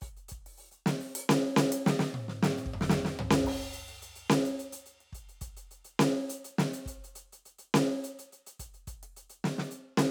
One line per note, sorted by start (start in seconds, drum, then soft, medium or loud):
0.01 open hi-hat medium
0.01 kick soft
0.06 hi-hat pedal soft
0.17 closed hi-hat soft
0.28 closed hi-hat medium
0.28 kick soft
0.46 open hi-hat medium
0.57 open hi-hat medium
0.71 open hi-hat medium
0.86 snare loud
1.00 open hi-hat medium
1.15 open hi-hat loud
1.20 hi-hat pedal soft
1.29 snare loud
1.56 snare loud
1.72 closed hi-hat loud
1.86 snare loud
1.99 snare loud
2.05 hi-hat pedal soft
2.14 high tom loud
2.28 snare medium
2.43 snare loud
2.57 hi-hat pedal soft
2.57 high tom medium
2.66 kick medium
2.73 kick soft
2.73 mid tom medium
2.76 kick soft
2.81 snare medium
2.89 snare loud
3.05 snare medium
3.19 floor tom medium
3.31 snare loud
3.37 hi-hat pedal soft
3.44 kick soft
3.44 crash loud
3.50 kick soft
3.73 closed hi-hat medium
3.88 closed hi-hat soft
4.02 closed hi-hat medium
4.15 closed hi-hat medium
4.30 snare loud
4.45 closed hi-hat medium
4.59 closed hi-hat medium
4.72 closed hi-hat medium
4.86 closed hi-hat medium
5.00 closed hi-hat soft
5.12 closed hi-hat medium
5.12 kick soft
5.29 closed hi-hat soft
5.41 closed hi-hat medium
5.41 kick soft
5.49 kick soft
5.57 closed hi-hat medium
5.71 closed hi-hat medium
5.84 closed hi-hat medium
5.99 snare loud
6.29 closed hi-hat loud
6.44 closed hi-hat medium
6.58 snare loud
6.73 closed hi-hat medium
6.86 closed hi-hat medium
6.86 kick soft
6.92 kick soft
7.04 closed hi-hat soft
7.15 closed hi-hat medium
7.32 closed hi-hat medium
7.45 closed hi-hat medium
7.58 closed hi-hat medium
7.74 snare loud
8.04 closed hi-hat medium
8.19 closed hi-hat medium
8.32 closed hi-hat medium
8.46 closed hi-hat medium
8.59 closed hi-hat medium
8.59 kick soft
8.74 closed hi-hat soft
8.87 closed hi-hat medium
8.87 kick soft
9.03 closed hi-hat medium
9.16 closed hi-hat medium
9.30 closed hi-hat medium
9.44 snare loud
9.58 snare medium
9.63 hi-hat pedal soft
9.71 closed hi-hat medium
9.97 snare loud